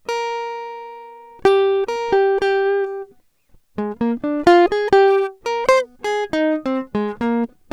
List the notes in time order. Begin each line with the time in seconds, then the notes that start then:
0.10 A#4
1.46 G4
1.90 A#4
2.14 G4
2.44 G4
3.80 G#3
4.02 A#3
4.25 D4
4.48 F4
4.73 G#4
4.94 G4
5.47 A#4
5.70 C5
6.06 G#4
6.34 D#4
6.67 C4
6.96 G#3
7.22 A#3